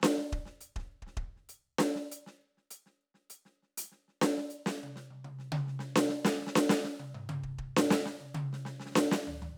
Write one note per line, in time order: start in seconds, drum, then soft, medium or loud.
0.00 snare soft
0.03 snare loud
0.17 snare soft
0.32 kick medium
0.45 snare soft
0.61 closed hi-hat medium
0.76 kick medium
0.76 snare soft
0.91 closed hi-hat soft
1.02 kick soft
1.06 snare soft
1.17 kick medium
1.36 snare soft
1.49 closed hi-hat medium
1.78 snare loud
1.95 snare soft
2.12 closed hi-hat medium
2.26 snare soft
2.41 closed hi-hat soft
2.57 snare soft
2.71 closed hi-hat medium
2.86 snare soft
3.01 closed hi-hat soft
3.14 snare soft
3.30 closed hi-hat medium
3.45 snare soft
3.62 snare soft
3.77 closed hi-hat loud
3.92 snare soft
4.08 snare soft
4.21 snare loud
4.37 snare soft
4.50 closed hi-hat medium
4.66 snare loud
4.83 high tom medium
4.96 snare soft
5.10 high tom soft
5.24 high tom medium
5.39 snare soft
5.52 high tom loud
5.67 snare soft
5.79 snare soft
5.96 snare loud
6.09 snare soft
6.25 snare loud
6.41 snare soft
6.47 snare medium
6.55 snare loud
6.69 snare loud
6.84 snare medium
7.00 high tom medium
7.14 mid tom medium
7.29 high tom loud
7.43 kick soft
7.58 kick soft
7.77 snare loud
7.90 snare loud
8.05 snare medium
8.20 high tom medium
8.35 high tom loud
8.53 snare soft
8.65 snare medium
8.80 snare soft
8.86 snare soft
8.91 snare soft
8.95 snare loud
9.11 snare loud
9.27 floor tom medium
9.42 floor tom medium